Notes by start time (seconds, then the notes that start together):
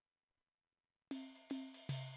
1.11 high tom, ride
1.35 ride
1.50 high tom, ride
1.74 ride
1.89 floor tom, ride